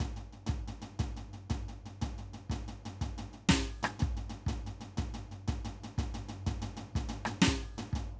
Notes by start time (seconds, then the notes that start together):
0.00 kick, floor tom
0.16 floor tom
0.33 floor tom
0.46 kick, floor tom
0.68 floor tom
0.82 floor tom
0.99 kick, floor tom
1.17 floor tom
1.33 floor tom
1.50 kick, floor tom
1.68 floor tom
1.86 floor tom
2.01 kick, floor tom
2.18 floor tom
2.33 floor tom
2.50 kick, floor tom
2.68 floor tom
2.85 floor tom
3.01 kick, floor tom
3.18 floor tom
3.33 floor tom
3.49 kick, snare, floor tom
3.83 cross-stick, floor tom
3.99 kick, floor tom
4.17 floor tom
4.29 floor tom
4.46 kick, floor tom
4.66 floor tom
4.81 floor tom
4.97 kick, floor tom
5.14 floor tom
5.31 floor tom
5.48 kick, floor tom
5.65 floor tom
5.83 floor tom
5.98 kick, floor tom
6.14 floor tom
6.29 floor tom
6.46 kick, floor tom
6.62 floor tom
6.77 floor tom
6.95 kick, floor tom
7.09 floor tom
7.25 cross-stick, floor tom
7.42 snare, floor tom
7.47 kick
7.78 floor tom
7.93 kick, floor tom